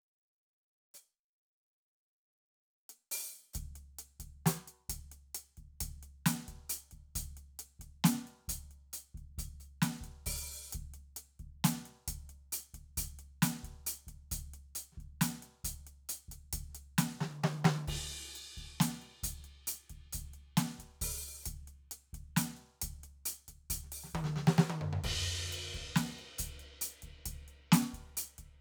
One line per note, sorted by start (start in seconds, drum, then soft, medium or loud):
0.94 hi-hat pedal medium
2.89 closed hi-hat medium
3.11 open hi-hat loud
3.53 kick soft
3.53 closed hi-hat medium
3.53 hi-hat pedal medium
3.75 closed hi-hat soft
3.99 closed hi-hat medium
4.20 kick soft
4.20 closed hi-hat medium
4.46 closed hi-hat loud
4.46 snare loud
4.68 closed hi-hat medium
4.89 kick soft
4.89 closed hi-hat loud
5.12 closed hi-hat soft
5.35 closed hi-hat loud
5.57 kick soft
5.57 closed hi-hat soft
5.80 kick soft
5.80 closed hi-hat loud
6.03 closed hi-hat soft
6.26 closed hi-hat loud
6.26 snare loud
6.48 kick soft
6.48 closed hi-hat soft
6.69 closed hi-hat loud
6.91 kick soft
6.91 closed hi-hat soft
7.15 closed hi-hat loud
7.15 kick soft
7.37 closed hi-hat soft
7.59 closed hi-hat medium
7.79 kick soft
7.79 closed hi-hat soft
8.04 closed hi-hat loud
8.04 snare loud
8.27 closed hi-hat soft
8.48 closed hi-hat loud
8.48 kick soft
8.71 closed hi-hat soft
8.93 closed hi-hat medium
9.14 kick soft
9.14 closed hi-hat soft
9.38 closed hi-hat medium
9.38 kick soft
9.60 closed hi-hat soft
9.82 snare loud
9.82 closed hi-hat medium
10.01 kick soft
10.01 closed hi-hat soft
10.26 open hi-hat loud
10.26 kick soft
10.70 closed hi-hat medium
10.70 hi-hat pedal soft
10.75 kick soft
10.94 closed hi-hat soft
11.16 closed hi-hat medium
11.39 kick soft
11.39 closed hi-hat soft
11.64 closed hi-hat loud
11.64 snare loud
11.85 closed hi-hat soft
12.08 kick soft
12.08 closed hi-hat loud
12.29 closed hi-hat soft
12.52 closed hi-hat loud
12.74 kick soft
12.74 closed hi-hat soft
12.97 closed hi-hat loud
12.97 kick soft
13.19 closed hi-hat soft
13.42 closed hi-hat loud
13.42 snare loud
13.63 kick soft
13.63 closed hi-hat soft
13.86 closed hi-hat loud
14.07 kick soft
14.07 closed hi-hat soft
14.31 closed hi-hat loud
14.31 kick soft
14.54 closed hi-hat soft
14.75 closed hi-hat loud
14.92 snare soft
14.97 kick soft
14.97 closed hi-hat soft
15.21 closed hi-hat loud
15.21 snare medium
15.42 closed hi-hat soft
15.64 closed hi-hat loud
15.64 kick soft
15.87 closed hi-hat soft
16.09 closed hi-hat loud
16.28 kick soft
16.28 closed hi-hat medium
16.53 kick soft
16.53 closed hi-hat loud
16.69 snare soft
16.75 closed hi-hat medium
16.98 snare loud
16.98 closed hi-hat loud
17.19 kick soft
17.19 snare medium
17.19 high tom medium
17.43 snare medium
17.43 high tom loud
17.64 snare loud
17.64 high tom loud
17.87 kick medium
17.87 crash loud
18.35 closed hi-hat medium
18.57 kick soft
18.57 closed hi-hat soft
18.80 closed hi-hat loud
18.80 snare loud
19.01 closed hi-hat soft
19.23 closed hi-hat loud
19.23 kick soft
19.38 snare soft
19.44 closed hi-hat soft
19.67 closed hi-hat loud
19.90 kick soft
19.90 closed hi-hat soft
20.12 closed hi-hat loud
20.12 kick soft
20.25 snare soft
20.33 closed hi-hat soft
20.57 snare loud
20.57 closed hi-hat loud
20.79 kick soft
20.79 closed hi-hat soft
21.01 open hi-hat loud
21.01 kick soft
21.43 kick soft
21.43 closed hi-hat medium
21.43 hi-hat pedal medium
21.67 closed hi-hat soft
21.91 closed hi-hat medium
22.13 kick soft
22.13 closed hi-hat soft
22.36 closed hi-hat loud
22.36 snare loud
22.57 closed hi-hat soft
22.82 kick soft
22.82 closed hi-hat loud
23.03 closed hi-hat soft
23.25 closed hi-hat loud
23.48 kick soft
23.48 closed hi-hat medium
23.70 closed hi-hat loud
23.70 kick soft
23.83 snare soft
23.92 open hi-hat medium
24.04 snare soft
24.14 kick soft
24.14 high tom loud
24.24 snare medium
24.36 snare medium
24.47 snare loud
24.58 snare loud
24.70 closed hi-hat soft
24.70 high tom loud
24.81 floor tom medium
24.93 floor tom medium
25.04 kick medium
25.04 ride loud
25.52 closed hi-hat medium
25.74 kick soft
25.74 closed hi-hat soft
25.96 snare loud
25.96 closed hi-hat medium
26.18 closed hi-hat soft
26.38 closed hi-hat loud
26.38 kick soft
26.59 closed hi-hat soft
26.81 closed hi-hat loud
27.02 kick soft
27.02 closed hi-hat soft
27.26 kick soft
27.26 closed hi-hat medium
27.48 closed hi-hat soft
27.72 closed hi-hat loud
27.72 snare loud
27.93 kick soft
27.93 closed hi-hat soft
28.17 closed hi-hat loud
28.38 kick soft
28.38 closed hi-hat soft